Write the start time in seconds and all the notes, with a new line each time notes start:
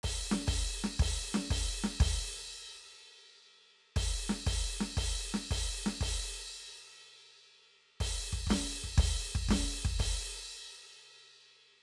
0.03 kick, crash
0.31 snare
0.47 kick, crash
0.84 snare
0.99 kick, crash
1.34 snare
1.50 kick, crash
1.84 snare
2.00 kick, crash
3.96 kick, crash
4.29 snare
4.46 kick, crash
4.81 snare
4.97 kick, crash
5.34 snare
5.51 kick, crash
5.86 snare
6.01 kick, crash
8.00 kick, crash
8.33 kick
8.47 kick, snare, crash
8.52 kick
8.84 kick
8.98 kick, crash
9.35 kick
9.49 kick, snare, crash
9.54 kick
9.85 kick
9.99 kick, crash